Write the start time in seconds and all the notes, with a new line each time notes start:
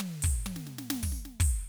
0.00 high tom
0.22 open hi-hat, kick
0.43 hi-hat pedal, high tom
0.56 snare
0.67 snare
0.78 snare
0.90 snare
1.03 kick, open hi-hat
1.09 snare, hi-hat pedal
1.18 kick
1.25 snare
1.40 open hi-hat, kick